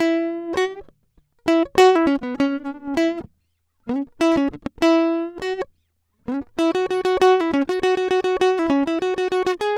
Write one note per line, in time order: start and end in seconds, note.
0.01 0.56 E4
0.59 0.69 F#4
1.49 1.71 E4
1.79 1.96 F#4
1.97 2.15 E4
2.08 2.20 C#4
2.25 2.37 B3
2.41 2.61 C#4
2.98 3.25 E4
3.91 4.08 C#4
4.22 4.43 E4
4.38 4.52 C#4
4.83 5.41 E4
5.43 5.65 F#4
6.29 6.45 C#4
6.60 6.74 E4
6.76 6.88 F#4
6.92 7.03 F#4
7.06 7.19 F#4
7.23 7.41 F#4
7.42 7.55 E4
7.55 7.68 C#4
7.70 7.82 F#4
7.84 7.94 F#4
7.94 8.12 F#4
8.12 8.23 F#4
8.26 8.39 F#4
8.42 8.60 F#4
8.60 8.77 E4
8.71 8.91 C#4
8.89 9.02 E4
9.04 9.17 F#4
9.19 9.31 F#4
9.33 9.45 F#4
9.48 9.59 F#4
9.62 9.77 G#4